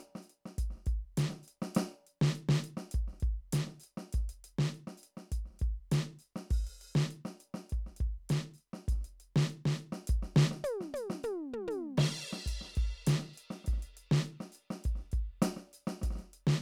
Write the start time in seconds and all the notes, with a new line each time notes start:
0.01 closed hi-hat
0.16 snare
0.23 hi-hat pedal
0.30 closed hi-hat
0.46 snare
0.59 closed hi-hat, kick
0.71 snare
0.75 snare
0.78 snare
0.87 kick, closed hi-hat
0.96 kick
1.18 closed hi-hat, snare
1.30 snare
1.44 hi-hat pedal
1.48 closed hi-hat
1.62 snare
1.75 closed hi-hat, snare
2.07 closed hi-hat
2.22 snare
2.36 closed hi-hat
2.49 snare
2.64 closed hi-hat
2.78 snare
2.92 closed hi-hat, kick
3.08 snare
3.13 snare
3.21 kick, closed hi-hat
3.32 kick
3.53 closed hi-hat, snare
3.68 snare
3.80 closed hi-hat, hi-hat pedal
3.98 snare
4.13 closed hi-hat, kick, snare
4.18 snare
4.30 closed hi-hat
4.45 closed hi-hat
4.59 snare
4.75 closed hi-hat
4.88 snare
4.98 hi-hat pedal
5.04 closed hi-hat
5.18 snare
5.32 closed hi-hat, kick
5.46 snare
5.51 snare
5.55 snare
5.60 kick, closed hi-hat
5.71 kick
5.92 closed hi-hat, snare
6.04 snare
6.19 closed hi-hat, hi-hat pedal
6.36 snare
6.50 open hi-hat, kick, snare
6.61 kick
6.67 open hi-hat
6.82 open hi-hat
6.96 snare
7.11 closed hi-hat
7.26 snare
7.40 closed hi-hat, hi-hat pedal
7.55 snare
7.70 closed hi-hat, kick
7.87 snare
7.97 closed hi-hat, kick
8.07 kick
8.10 kick
8.30 closed hi-hat, snare
8.54 hi-hat pedal
8.59 closed hi-hat
8.74 snare
8.89 closed hi-hat, kick, snare
8.95 kick, snare
8.98 kick, snare
9.02 closed hi-hat, snare
9.21 closed hi-hat
9.37 snare
9.50 closed hi-hat
9.66 snare
9.75 hi-hat pedal
9.80 closed hi-hat
9.93 snare
10.08 closed hi-hat, kick
10.16 kick
10.20 kick, snare
10.37 snare
10.52 snare
10.64 hi-hat pedal, high tom
10.81 snare
10.94 hi-hat pedal, high tom
11.11 snare
11.24 hi-hat pedal, mid tom
11.54 mid tom
11.68 hi-hat pedal, mid tom
11.98 snare, crash
12.33 snare
12.47 closed hi-hat, kick
12.62 snare
12.65 snare
12.76 kick, closed hi-hat
12.87 kick
13.07 closed hi-hat, snare
13.20 snare
13.34 closed hi-hat, hi-hat pedal
13.51 snare
13.65 kick, snare, closed hi-hat
13.71 snare
13.74 kick, snare
13.78 snare
13.83 closed hi-hat
13.97 closed hi-hat
14.12 snare
14.26 closed hi-hat
14.41 snare
14.53 closed hi-hat, hi-hat pedal
14.71 snare
14.85 closed hi-hat, kick
14.96 snare
15.00 snare
15.12 kick, closed hi-hat
15.22 kick
15.43 closed hi-hat, snare
15.57 snare
15.74 hi-hat pedal
15.88 snare
16.02 closed hi-hat, kick, snare
16.11 kick, snare
16.16 open hi-hat, snare
16.20 snare
16.24 snare
16.34 closed hi-hat
16.48 snare